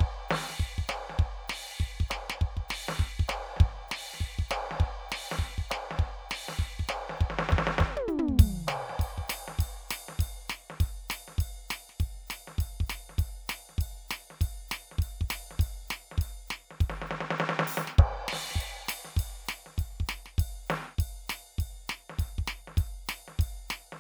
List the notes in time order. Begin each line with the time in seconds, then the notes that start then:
0.01 kick
0.29 snare, hi-hat pedal, crash
0.50 snare
0.60 kick
0.79 kick
0.88 snare, hi-hat pedal, crash
1.10 snare
1.20 kick
1.48 snare, hi-hat pedal, crash
1.80 kick
2.01 kick
2.08 snare, hi-hat pedal, crash
2.30 snare
2.42 kick
2.57 kick
2.69 snare, hi-hat pedal, crash
2.89 snare
3.00 kick
3.20 kick
3.28 snare, hi-hat pedal, crash
3.57 kick, snare
3.88 snare, hi-hat pedal
3.92 crash
4.14 snare
4.21 kick
4.39 kick
4.49 snare, hi-hat pedal, crash
4.71 snare
4.80 kick
5.09 snare, hi-hat pedal, crash
5.32 snare
5.39 kick
5.59 kick
5.69 snare, hi-hat pedal, crash
5.91 snare
5.99 kick
6.20 kick
6.29 snare, hi-hat pedal, crash
6.49 snare
6.59 kick
6.80 kick
6.88 snare, hi-hat pedal, crash
7.10 snare
7.17 hi-hat pedal
7.21 kick
7.31 snare
7.39 snare
7.49 kick, snare, hi-hat pedal
7.59 snare
7.67 snare
7.79 kick, snare, hi-hat pedal
7.88 high tom
7.97 high tom
8.08 floor tom, hi-hat pedal
8.19 floor tom
8.29 kick
8.39 kick, ride
8.68 snare, hi-hat pedal, crash
8.90 snare
9.00 kick, ride
9.18 kick
9.27 snare, hi-hat pedal, ride
9.48 snare
9.59 kick, ride
9.89 snare, hi-hat pedal, ride
10.09 snare
10.20 kick, ride
10.49 snare, hi-hat pedal, ride
10.70 snare
10.81 kick, ride
11.08 snare, hi-hat pedal, ride
11.28 snare
11.33 snare
11.39 kick, ride
11.69 snare, hi-hat pedal, ride
11.90 snare
12.00 kick, ride
12.27 snare, hi-hat pedal, ride
12.48 snare
12.59 kick, ride
12.81 kick
12.87 snare, hi-hat pedal
12.91 ride
13.10 snare
13.19 kick, ride
13.47 snare, hi-hat pedal, ride
13.70 snare
13.79 kick, ride
14.08 snare, hi-hat pedal, ride
14.31 snare
14.41 kick, ride
14.68 snare, hi-hat pedal, ride
14.92 snare
14.99 kick, ride
15.21 kick
15.28 snare, hi-hat pedal, ride
15.51 snare
15.60 kick, ride
15.82 kick
15.88 snare, hi-hat pedal, ride
16.12 snare
16.18 kick, ride
16.48 snare, hi-hat pedal, ride
16.71 snare
16.81 kick, ride
16.90 snare
17.02 snare
17.07 hi-hat pedal
17.11 snare
17.21 snare
17.31 snare
17.38 snare, hi-hat pedal
17.50 snare
17.60 snare
17.68 open hi-hat
17.78 snare
17.88 snare
17.99 kick, crash
18.28 snare, hi-hat pedal, crash
18.33 snare
18.52 snare
18.56 kick
18.61 ride
18.85 snare, hi-hat pedal
18.90 ride
19.05 snare
19.17 kick, ride
19.46 snare, hi-hat pedal, ride
19.67 snare
19.78 kick, ride
20.00 kick
20.06 snare, hi-hat pedal, ride
20.26 snare
20.39 kick, ride
20.67 snare, hi-hat pedal, ride
20.99 kick, ride
21.27 snare, hi-hat pedal, ride
21.59 kick, ride
21.88 snare, hi-hat pedal, ride
22.10 snare
22.19 kick, ride
22.39 kick
22.46 snare, hi-hat pedal, ride
22.68 snare
22.78 kick, ride
23.07 snare, hi-hat pedal, ride
23.28 snare
23.40 kick, ride
23.68 snare, hi-hat pedal, ride
23.93 snare